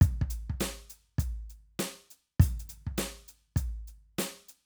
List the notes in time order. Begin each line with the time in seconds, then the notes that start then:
0.00 kick, closed hi-hat
0.21 kick
0.30 closed hi-hat
0.49 kick
0.60 snare, closed hi-hat
0.90 closed hi-hat
1.18 kick, closed hi-hat
1.49 closed hi-hat
1.79 snare, closed hi-hat
2.10 closed hi-hat
2.40 closed hi-hat, kick
2.59 closed hi-hat
2.69 closed hi-hat
2.87 kick
2.97 snare, closed hi-hat
3.28 closed hi-hat
3.56 kick, closed hi-hat
3.87 closed hi-hat
4.18 closed hi-hat, snare
4.48 closed hi-hat